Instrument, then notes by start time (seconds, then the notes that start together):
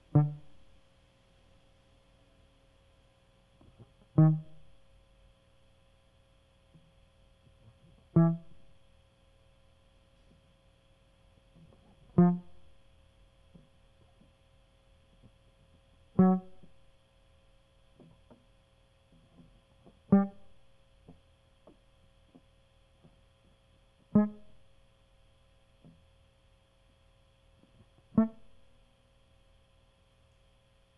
electric guitar
0.17 D3
4.19 D#3
8.18 E3
12.20 F3
16.20 F#3
20.14 G3
24.17 G#3
28.19 A3